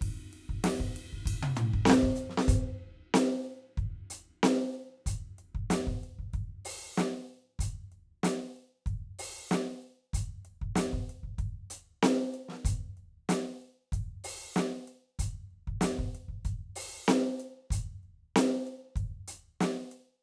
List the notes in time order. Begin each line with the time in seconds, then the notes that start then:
0.01 kick, ride
0.33 ride
0.49 kick
0.63 snare, hi-hat pedal, ride
0.80 kick
0.93 hi-hat pedal, ride
1.13 kick
1.26 kick, ride bell
1.43 high tom
1.56 hi-hat pedal, mid tom
1.73 kick
1.85 snare, hi-hat pedal
1.90 snare
2.03 kick
2.15 hi-hat pedal
2.29 snare
2.38 snare
2.48 closed hi-hat, kick
3.14 closed hi-hat, snare
3.47 closed hi-hat
3.77 kick, closed hi-hat
4.10 open hi-hat
4.43 snare, hi-hat pedal
4.75 closed hi-hat
5.06 closed hi-hat, kick
5.38 closed hi-hat
5.55 kick
5.70 closed hi-hat, snare
5.87 kick
6.03 closed hi-hat
6.19 kick
6.33 kick, closed hi-hat
6.65 open hi-hat
6.98 open hi-hat, snare, hi-hat pedal
7.59 closed hi-hat, kick
7.92 closed hi-hat
8.23 closed hi-hat, snare
8.56 closed hi-hat
8.86 kick, closed hi-hat
9.19 open hi-hat
9.51 open hi-hat, snare, hi-hat pedal
9.82 closed hi-hat
10.13 closed hi-hat, kick
10.45 closed hi-hat
10.61 kick
10.76 closed hi-hat, snare
10.93 kick
11.09 closed hi-hat
11.23 kick
11.38 kick, closed hi-hat
11.70 open hi-hat
12.03 closed hi-hat, snare, hi-hat pedal
12.34 closed hi-hat
12.49 snare
12.52 snare
12.65 closed hi-hat, kick
12.97 closed hi-hat
13.29 closed hi-hat, snare
13.62 closed hi-hat
13.92 kick, closed hi-hat
14.24 open hi-hat
14.56 closed hi-hat, snare, hi-hat pedal
14.88 closed hi-hat
15.19 closed hi-hat, kick
15.51 closed hi-hat
15.67 kick
15.81 closed hi-hat, snare
15.99 kick
16.15 closed hi-hat
16.28 kick
16.45 closed hi-hat, kick
16.76 open hi-hat
17.08 snare, closed hi-hat, hi-hat pedal
17.40 closed hi-hat
17.70 closed hi-hat, kick
18.03 closed hi-hat
18.36 closed hi-hat, snare
18.67 closed hi-hat
18.96 kick, closed hi-hat
19.28 open hi-hat
19.61 snare, closed hi-hat, hi-hat pedal
19.91 closed hi-hat